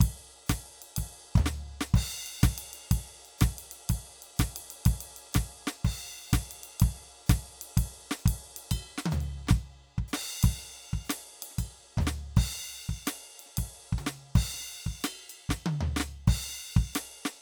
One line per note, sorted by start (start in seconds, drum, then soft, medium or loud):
0.01 kick loud
0.01 ride loud
0.47 kick medium
0.47 snare loud
0.47 hi-hat pedal medium
0.47 ride loud
0.82 ride medium
0.97 kick medium
0.97 ride loud
1.36 kick loud
1.36 floor tom loud
1.36 hi-hat pedal medium
1.46 snare loud
1.81 snare loud
1.94 kick loud
1.94 crash loud
2.27 ride medium
2.39 hi-hat pedal medium
2.44 kick loud
2.44 snare loud
2.44 ride loud
2.58 ride loud
2.74 snare soft
2.74 ride medium
2.78 snare soft
2.80 snare soft
2.92 kick loud
2.92 ride loud
3.26 ride soft
3.39 kick loud
3.39 snare loud
3.39 hi-hat pedal medium
3.39 ride loud
3.59 ride medium
3.72 ride medium
3.76 snare soft
3.79 snare soft
3.90 kick medium
3.90 ride loud
4.23 ride medium
4.37 kick loud
4.37 snare loud
4.37 hi-hat pedal medium
4.37 ride loud
4.57 ride loud
4.71 ride medium
4.85 kick loud
4.85 snare soft
4.85 ride loud
5.01 ride medium
5.17 ride medium
5.33 kick loud
5.33 snare loud
5.33 hi-hat pedal medium
5.33 ride loud
5.68 snare loud
5.85 kick loud
5.85 crash loud
6.30 kick loud
6.30 snare loud
6.30 hi-hat pedal medium
6.30 ride loud
6.52 ride medium
6.64 ride medium
6.76 snare soft
6.80 kick loud
6.80 ride loud
7.27 kick loud
7.27 snare loud
7.27 hi-hat pedal medium
7.27 ride loud
7.62 ride medium
7.78 kick loud
7.78 ride loud
8.12 snare loud
8.19 hi-hat pedal medium
8.26 kick loud
8.26 ride loud
8.57 ride medium
8.72 kick medium
8.72 ride bell loud
8.98 snare loud
9.06 high tom loud
9.12 floor tom loud
9.12 hi-hat pedal medium
9.21 ride soft
9.48 kick loud
9.48 snare loud
9.48 high tom soft
9.99 kick medium
10.08 hi-hat pedal medium
10.14 snare loud
10.14 crash loud
10.43 kick loud
10.43 ride loud
10.58 snare soft
10.64 snare soft
10.94 kick medium
11.05 hi-hat pedal medium
11.10 snare loud
11.10 ride loud
11.43 ride loud
11.51 snare soft
11.56 kick medium
11.56 snare soft
11.56 ride bell medium
11.98 kick medium
11.98 floor tom loud
11.98 hi-hat pedal medium
12.07 snare loud
12.37 kick loud
12.37 crash loud
12.52 snare soft
12.90 kick medium
13.06 snare loud
13.06 hi-hat pedal medium
13.06 ride loud
13.40 ride medium
13.47 snare soft
13.50 snare soft
13.58 kick medium
13.58 ride loud
13.93 kick medium
13.99 hi-hat pedal medium
13.99 high tom medium
14.07 snare loud
14.36 kick loud
14.36 crash loud
14.54 snare soft
14.61 snare soft
14.63 snare soft
14.87 kick medium
15.01 hi-hat pedal medium
15.05 snare loud
15.05 ride bell loud
15.30 ride bell medium
15.50 kick medium
15.50 snare loud
15.66 high tom loud
15.81 floor tom loud
15.97 snare loud
16.00 snare loud
16.28 kick loud
16.28 crash loud
16.49 snare soft
16.52 snare soft
16.54 snare soft
16.77 kick loud
16.93 snare loud
16.93 hi-hat pedal medium
16.93 ride loud
17.26 snare loud